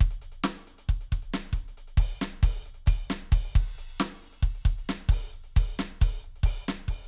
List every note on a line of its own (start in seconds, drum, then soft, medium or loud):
0.01 kick loud
0.01 closed hi-hat medium
0.11 closed hi-hat medium
0.22 closed hi-hat medium
0.44 snare loud
0.56 closed hi-hat medium
0.68 closed hi-hat medium
0.79 closed hi-hat medium
0.89 closed hi-hat medium
0.89 kick loud
1.01 closed hi-hat medium
1.12 closed hi-hat medium
1.12 kick loud
1.23 closed hi-hat medium
1.34 snare loud
1.46 closed hi-hat medium
1.53 kick medium
1.68 closed hi-hat medium
1.78 closed hi-hat medium
1.98 open hi-hat loud
1.98 kick loud
2.13 hi-hat pedal soft
2.13 open hi-hat soft
2.22 snare loud
2.34 closed hi-hat soft
2.43 open hi-hat loud
2.43 kick loud
2.56 open hi-hat soft
2.62 closed hi-hat medium
2.62 hi-hat pedal soft
2.75 closed hi-hat medium
2.87 open hi-hat loud
2.87 kick loud
2.98 open hi-hat soft
3.07 snare loud
3.07 hi-hat pedal soft
3.20 closed hi-hat medium
3.32 open hi-hat loud
3.32 kick loud
3.45 open hi-hat medium
3.52 kick loud
3.52 hi-hat pedal soft
3.57 crash medium
3.68 closed hi-hat soft
3.78 closed hi-hat medium
3.89 closed hi-hat soft
4.00 snare loud
4.10 closed hi-hat soft
4.23 closed hi-hat medium
4.33 closed hi-hat medium
4.43 kick loud
4.43 closed hi-hat medium
4.55 closed hi-hat soft
4.66 closed hi-hat medium
4.66 kick loud
4.78 closed hi-hat medium
4.89 snare loud
5.01 closed hi-hat medium
5.09 open hi-hat loud
5.09 kick loud
5.25 open hi-hat soft
5.30 closed hi-hat medium
5.30 hi-hat pedal soft
5.44 closed hi-hat soft
5.56 open hi-hat loud
5.56 kick loud
5.68 open hi-hat soft
5.74 hi-hat pedal soft
5.79 snare loud
5.91 closed hi-hat soft
6.01 open hi-hat loud
6.01 kick loud
6.16 hi-hat pedal soft
6.16 open hi-hat soft
6.25 closed hi-hat medium
6.36 closed hi-hat soft
6.44 open hi-hat loud
6.44 kick loud
6.58 open hi-hat soft
6.64 hi-hat pedal soft
6.69 snare loud
6.80 closed hi-hat medium
6.89 open hi-hat medium
6.89 kick medium
7.04 open hi-hat soft